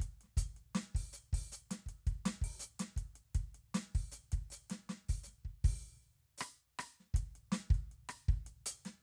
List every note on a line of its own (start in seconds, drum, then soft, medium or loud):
0.01 kick soft
0.01 snare soft
0.01 closed hi-hat soft
0.22 snare soft
0.22 closed hi-hat soft
0.38 closed hi-hat medium
0.38 kick soft
0.57 closed hi-hat soft
0.76 snare medium
0.76 closed hi-hat soft
0.96 kick soft
0.96 open hi-hat medium
1.14 hi-hat pedal medium
1.34 kick soft
1.34 open hi-hat medium
1.53 hi-hat pedal medium
1.72 snare soft
1.72 closed hi-hat medium
1.87 kick soft
1.87 closed hi-hat soft
2.08 kick soft
2.08 closed hi-hat soft
2.26 snare medium
2.26 closed hi-hat medium
2.43 kick soft
2.43 open hi-hat soft
2.60 closed hi-hat soft
2.60 hi-hat pedal medium
2.80 snare soft
2.80 closed hi-hat medium
2.97 kick soft
2.97 closed hi-hat soft
3.16 closed hi-hat soft
3.36 kick soft
3.36 closed hi-hat soft
3.55 closed hi-hat soft
3.75 snare medium
3.75 closed hi-hat medium
3.96 kick soft
3.96 open hi-hat soft
4.13 closed hi-hat soft
4.13 hi-hat pedal medium
4.33 kick soft
4.33 closed hi-hat soft
4.51 hi-hat pedal medium
4.51 open hi-hat soft
4.71 snare soft
4.71 closed hi-hat soft
4.90 snare soft
4.90 closed hi-hat soft
5.10 open hi-hat soft
5.10 kick soft
5.24 snare soft
5.24 hi-hat pedal soft
5.46 kick soft
5.65 open hi-hat soft
5.65 kick soft
6.39 cross-stick medium
6.39 hi-hat pedal medium
6.80 cross-stick medium
6.84 cross-stick soft
7.01 snare soft
7.04 snare soft
7.15 kick soft
7.15 closed hi-hat soft
7.36 closed hi-hat soft
7.53 snare medium
7.53 closed hi-hat soft
7.71 kick soft
7.75 closed hi-hat soft
7.92 closed hi-hat soft
8.10 cross-stick medium
8.10 closed hi-hat soft
8.29 kick soft
8.29 closed hi-hat soft
8.47 closed hi-hat soft
8.67 closed hi-hat medium
8.86 snare soft
8.86 closed hi-hat soft